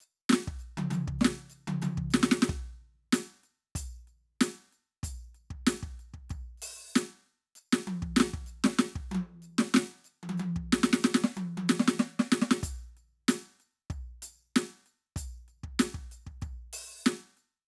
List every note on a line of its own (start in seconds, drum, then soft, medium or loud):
0.01 percussion soft
0.30 snare loud
0.30 percussion medium
0.33 snare loud
0.48 kick medium
0.60 percussion soft
0.78 mid tom loud
0.78 high tom loud
0.91 mid tom loud
0.91 high tom loud
0.91 percussion medium
1.08 kick medium
1.20 snare loud
1.20 percussion soft
1.25 snare loud
1.51 percussion medium
1.68 mid tom loud
1.68 high tom loud
1.83 mid tom loud
1.83 high tom loud
1.83 percussion medium
1.98 kick medium
2.11 snare loud
2.11 percussion medium
2.24 snare loud
2.32 snare loud
2.43 snare loud
2.50 kick medium
3.13 snare loud
3.13 percussion loud
3.44 percussion soft
3.76 kick medium
3.76 percussion loud
4.08 percussion soft
4.41 snare loud
4.41 percussion loud
4.73 percussion soft
5.04 kick medium
5.04 percussion loud
5.35 percussion soft
5.51 kick medium
5.67 snare loud
5.67 percussion loud
5.83 kick medium
6.00 percussion soft
6.14 kick soft
6.30 kick medium
6.30 percussion soft
6.58 percussion soft
6.63 percussion loud
6.96 snare loud
6.96 percussion medium
6.96 percussion loud
7.56 percussion medium
7.73 snare loud
7.86 high tom loud
7.86 percussion soft
8.03 kick medium
8.17 snare loud
8.17 percussion medium
8.21 snare loud
8.34 kick medium
8.47 percussion medium
8.65 snare loud
8.79 snare loud
8.79 percussion soft
8.96 kick medium
9.09 high tom loud
9.09 percussion soft
9.15 high tom loud
9.34 high tom soft
9.43 percussion soft
9.59 snare loud
9.61 snare loud
9.75 snare loud
9.77 snare loud
10.05 percussion medium
10.24 high tom loud
10.30 high tom loud
10.38 high tom loud
10.38 percussion soft
10.57 kick medium
10.73 snare loud
10.84 snare loud
10.94 snare loud
11.01 snare loud
11.01 percussion medium
11.15 snare loud
11.24 snare loud
11.36 high tom loud
11.36 percussion medium
11.58 high tom loud
11.69 snare loud
11.69 percussion medium
11.80 snare loud
11.88 snare loud
12.00 snare loud
12.20 snare loud
12.33 snare loud
12.33 percussion soft
12.42 snare loud
12.51 snare loud
12.64 kick medium
12.64 percussion loud
12.98 percussion soft
13.29 snare loud
13.29 percussion loud
13.61 percussion soft
13.91 kick medium
13.91 percussion soft
14.23 percussion loud
14.56 snare loud
14.56 percussion medium
14.87 percussion soft
15.17 kick medium
15.17 percussion loud
15.49 percussion soft
15.64 kick medium
15.80 snare loud
15.80 percussion loud
15.95 kick medium
16.12 percussion medium
16.27 kick soft
16.42 kick medium
16.42 percussion soft
16.74 percussion loud
17.06 snare loud
17.06 percussion medium
17.38 percussion soft